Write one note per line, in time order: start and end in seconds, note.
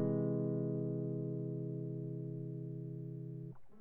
0.00 3.55 C3
0.00 3.55 E3
0.00 3.54 G#3